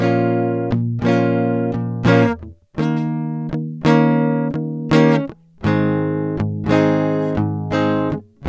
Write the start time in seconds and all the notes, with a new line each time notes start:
0.01 A#2 F3 A#3 C#4
0.05 F4
0.72 A#2 F3
1.00 A#2 F3
1.06 A#3 C#4 F4
1.73 A#2 F3
2.06 A#2 F3 A#3 C#4
2.10 F4
2.79 D#3 A#3
3.54 D#3 A#3
3.86 D#3 A#3 C#4
4.55 D#3 A#3
4.92 D#3 A#3 C#4
4.97 G4
5.65 G#2 D#3 G#3 C4
5.71 D#4
6.40 G#2 D#3
6.68 G#2 D#3 G#3
6.72 C4 D#4 G#4
7.37 G#2 D#3
7.72 D#3 G#3 C4 D#4
7.77 G#4
8.12 G#3